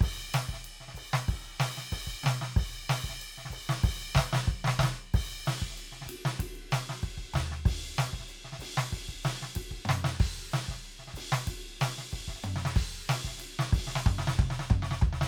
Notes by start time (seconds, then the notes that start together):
0.01 kick, crash
0.34 snare, hi-hat pedal, crash
0.49 kick
0.53 snare
0.65 crash
0.81 snare
0.88 snare
0.95 kick, hi-hat pedal, crash
1.14 snare
1.29 kick, crash
1.43 crash
1.57 kick, snare, hi-hat pedal, crash
1.78 snare
1.92 kick, crash
2.07 kick
2.24 snare, hi-hat pedal, high tom
2.42 snare
2.57 kick, crash
2.89 snare, hi-hat pedal, crash
3.04 kick
3.10 snare
3.21 hi-hat pedal, crash
3.38 snare
3.45 snare
3.51 kick, hi-hat pedal, crash
3.69 snare
3.84 kick, hi-hat pedal, crash
4.15 kick, snare
4.18 snare
4.33 snare
4.35 snare
4.48 kick, snare, hi-hat pedal
4.65 snare
4.68 snare
4.79 kick, snare, hi-hat pedal
4.83 snare
5.14 kick, hi-hat pedal, crash
5.46 snare, hi-hat pedal, ride
5.62 kick
5.70 snare
5.77 hi-hat pedal, ride
5.92 snare
6.02 snare
6.07 kick, hi-hat pedal, ride
6.25 snare
6.40 kick, ride
6.56 ride
6.68 kick, hi-hat pedal
6.72 snare, ride
6.89 snare
7.03 kick, ride
7.18 kick
7.34 snare, floor tom, hi-hat pedal
7.52 snare
7.66 kick, ride
7.97 snare, hi-hat pedal, ride
8.13 kick
8.20 snare
8.28 hi-hat pedal, ride
8.45 snare
8.53 snare
8.59 kick, hi-hat pedal, ride
8.78 snare
8.93 kick, ride
9.08 kick, ride
9.23 snare, hi-hat pedal, ride
9.43 snare
9.56 kick, ride
9.71 kick
9.77 ride
9.85 snare, hi-hat pedal, mid tom
10.05 snare
10.20 kick, crash
10.51 snare, hi-hat pedal, ride
10.69 kick, snare
10.84 ride
10.99 snare
11.08 snare
11.14 kick, hi-hat pedal, ride
11.32 snare
11.47 kick, ride
11.63 ride
11.79 kick, snare, hi-hat pedal, ride
11.98 snare
12.12 kick, ride
12.28 kick, snare
12.36 snare
12.43 hi-hat pedal, mid tom
12.56 snare
12.65 snare
12.76 kick, crash
13.08 snare, hi-hat pedal, ride
13.25 kick, snare
13.38 snare, hi-hat pedal, ride
13.59 snare
13.73 kick, ride
13.87 snare
13.96 snare
14.06 kick, mid tom
14.19 snare
14.28 snare
14.39 kick, high tom
14.51 snare
14.60 snare
14.70 kick, mid tom
14.83 snare
14.91 snare
15.02 kick, floor tom
15.13 snare
15.21 snare